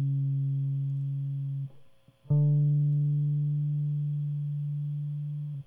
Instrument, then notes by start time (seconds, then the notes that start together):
electric guitar
2.31 D3